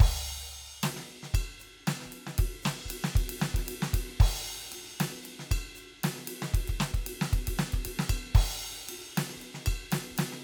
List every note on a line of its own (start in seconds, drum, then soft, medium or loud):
0.01 kick loud
0.01 hi-hat pedal medium
0.01 crash loud
0.52 hi-hat pedal soft
0.84 snare loud
0.84 ride loud
0.97 snare medium
1.01 snare medium
1.08 hi-hat pedal soft
1.08 ride soft
1.24 snare medium
1.35 kick medium
1.35 ride bell loud
1.60 hi-hat pedal medium
1.60 ride medium
1.88 snare loud
1.88 ride bell loud
2.01 snare medium
2.04 kick soft
2.04 snare soft
2.12 hi-hat pedal medium
2.12 ride medium
2.28 snare medium
2.39 kick medium
2.39 ride loud
2.63 snare loud
2.63 hi-hat pedal medium
2.63 ride medium
2.75 snare soft
2.78 snare soft
2.81 snare soft
2.86 kick soft
2.86 snare soft
2.86 hi-hat pedal medium
2.91 ride loud
3.05 snare loud
3.16 kick loud
3.16 ride loud
3.30 ride loud
3.38 snare loud
3.38 hi-hat pedal medium
3.55 kick medium
3.55 snare medium
3.55 ride loud
3.66 hi-hat pedal medium
3.66 ride loud
3.73 kick soft
3.83 snare loud
3.94 kick medium
3.94 ride loud
4.21 kick loud
4.21 crash loud
4.72 hi-hat pedal medium
4.72 ride medium
5.01 snare loud
5.01 ride loud
5.23 hi-hat pedal soft
5.23 ride medium
5.40 snare medium
5.52 kick medium
5.52 ride bell loud
5.76 hi-hat pedal medium
5.76 ride soft
6.04 snare loud
6.04 ride loud
6.17 snare soft
6.20 snare soft
6.27 hi-hat pedal medium
6.27 ride loud
6.43 snare loud
6.55 kick medium
6.55 ride loud
6.69 kick medium
6.69 ride medium
6.81 snare loud
6.81 hi-hat pedal medium
6.95 kick medium
6.95 ride medium
7.07 hi-hat pedal medium
7.07 ride loud
7.14 kick soft
7.22 snare loud
7.30 kick medium
7.30 hi-hat pedal medium
7.30 ride medium
7.48 kick medium
7.48 ride loud
7.58 snare loud
7.58 hi-hat pedal medium
7.73 kick medium
7.73 cross-stick medium
7.73 ride medium
7.85 kick soft
7.85 hi-hat pedal soft
7.85 ride loud
8.00 snare loud
8.08 kick medium
8.08 hi-hat pedal soft
8.08 ride bell loud
8.35 kick loud
8.35 hi-hat pedal medium
8.35 crash loud
8.87 hi-hat pedal soft
8.87 ride loud
9.18 snare loud
9.18 ride loud
9.30 snare soft
9.34 kick soft
9.34 snare soft
9.41 hi-hat pedal medium
9.41 ride medium
9.55 snare medium
9.67 kick medium
9.67 ride bell loud
9.91 snare loud
9.91 hi-hat pedal medium
9.91 ride loud
10.12 kick soft
10.17 snare loud
10.17 hi-hat pedal medium
10.17 ride loud
10.33 snare medium
10.40 snare soft